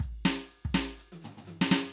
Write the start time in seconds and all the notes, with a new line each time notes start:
0.00 kick, ride
0.25 snare, ride
0.50 ride
0.65 kick
0.74 snare, ride
0.98 hi-hat pedal, ride
1.12 high tom
1.22 floor tom, hi-hat pedal
1.37 floor tom
1.45 hi-hat pedal, high tom
1.61 snare
1.69 snare, hi-hat pedal